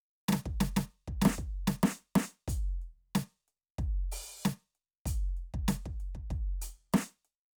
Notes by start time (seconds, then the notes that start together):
0.29 snare, hi-hat pedal
0.33 snare
0.46 kick
0.61 snare
0.77 snare
1.08 kick
1.22 snare
1.26 snare
1.39 kick
1.68 snare
1.84 snare
2.16 snare
2.49 closed hi-hat, kick
2.82 closed hi-hat
3.16 closed hi-hat, snare
3.49 closed hi-hat
3.79 kick, closed hi-hat
4.13 open hi-hat
4.44 snare, closed hi-hat, hi-hat pedal
4.76 closed hi-hat
5.06 closed hi-hat, kick
5.38 closed hi-hat
5.55 kick
5.69 closed hi-hat, snare
5.86 kick
6.01 closed hi-hat
6.16 kick
6.31 kick, closed hi-hat
6.62 open hi-hat
6.94 snare, closed hi-hat, hi-hat pedal
7.26 closed hi-hat